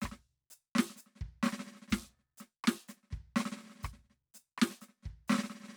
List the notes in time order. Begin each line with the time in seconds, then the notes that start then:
0.02 kick, cross-stick, snare, hi-hat pedal
0.12 snare
0.51 hi-hat pedal
0.76 snare
0.79 snare
0.90 snare
0.96 snare, hi-hat pedal
1.07 snare
1.10 snare
1.13 snare
1.16 snare
1.21 kick
1.43 snare, hi-hat pedal
1.46 cross-stick, snare
1.53 snare
1.58 snare
1.60 snare
1.64 snare
1.67 snare
1.72 snare
1.75 snare
1.82 snare
1.88 kick, snare, hi-hat pedal
1.93 snare
2.03 snare
2.10 snare
2.13 snare
2.19 snare
2.38 snare, hi-hat pedal
2.64 cross-stick, snare
2.89 snare, hi-hat pedal
2.97 snare
3.04 snare
3.06 snare
3.11 kick, snare
3.21 kick
3.36 snare, hi-hat pedal
3.40 cross-stick, snare
3.46 snare
3.52 snare
3.57 snare
3.59 snare
3.64 snare
3.66 snare
3.70 snare
3.76 snare
3.79 snare
3.83 kick, cross-stick, snare, hi-hat pedal
3.94 snare
3.98 snare
4.04 snare
4.10 snare
4.35 snare, hi-hat pedal
4.58 cross-stick, snare
4.71 snare
4.81 snare, hi-hat pedal
4.89 snare
4.94 snare
4.97 snare
5.00 snare
5.03 kick, snare
5.11 kick
5.28 snare, hi-hat pedal
5.32 snare
5.35 snare
5.39 snare
5.44 snare
5.50 snare
5.55 snare
5.61 snare
5.64 snare
5.69 snare
5.73 snare